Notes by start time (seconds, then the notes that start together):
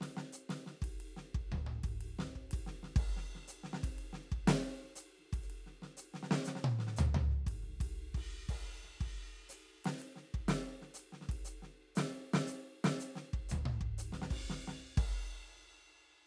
0.01 snare, ride
0.17 snare
0.33 hi-hat pedal
0.49 snare, ride
0.66 snare
0.82 kick, ride
1.00 ride
1.17 snare
1.35 kick
1.52 floor tom
1.67 high tom
1.84 kick, ride
2.01 ride
2.19 snare
2.36 kick
2.51 kick, ride
2.67 snare
2.83 snare
2.96 kick, crash
3.17 snare
3.35 snare
3.48 hi-hat pedal, ride
3.64 snare
3.73 snare
3.84 kick, ride
3.99 ride
4.13 snare
4.32 kick
4.48 snare, ride
4.84 snare
4.96 hi-hat pedal
5.01 ride
5.19 snare
5.33 kick, ride
5.43 hi-hat pedal
5.50 ride
5.66 snare
5.82 snare
5.97 hi-hat pedal, ride
6.14 snare
6.23 snare
6.31 snare
6.45 snare, hi-hat pedal
6.56 snare
6.64 high tom
6.79 snare
6.87 snare
6.93 snare
6.97 floor tom, hi-hat pedal
7.15 floor tom
7.30 snare
7.47 kick, ride
7.62 snare
7.81 kick, ride
8.15 kick, crash
8.49 kick, crash
8.84 snare
9.01 kick, crash
9.49 hi-hat pedal, ride
9.85 snare, ride
9.98 hi-hat pedal, ride
10.16 snare
10.34 kick
10.49 snare, ride
10.68 snare
10.82 snare
10.94 hi-hat pedal
11.00 ride
11.13 snare
11.21 snare
11.29 kick, ride
11.45 hi-hat pedal
11.49 ride
11.62 snare
11.96 snare, hi-hat pedal, ride
12.34 snare, ride
12.47 hi-hat pedal
12.52 ride
12.84 snare, ride
13.00 hi-hat pedal, ride
13.16 snare
13.34 kick
13.49 floor tom, hi-hat pedal
13.66 high tom
13.81 kick
13.98 hi-hat pedal, ride
14.13 snare
14.22 snare
14.31 kick, crash
14.50 snare
14.68 snare
14.80 kick
14.97 kick, crash